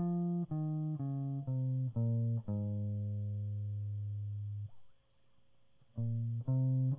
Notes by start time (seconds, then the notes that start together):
0.00 F3
0.52 D#3
1.01 C#3
1.49 C3
1.98 A#2
2.50 G#2
6.00 A#2
6.50 C3